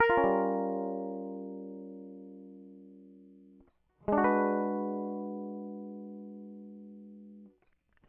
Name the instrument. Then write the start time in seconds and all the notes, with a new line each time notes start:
electric guitar
0.00 A#4
0.10 F4
0.17 C#4
0.24 G3
4.08 G#3
4.12 D4
4.17 F#4
4.24 B4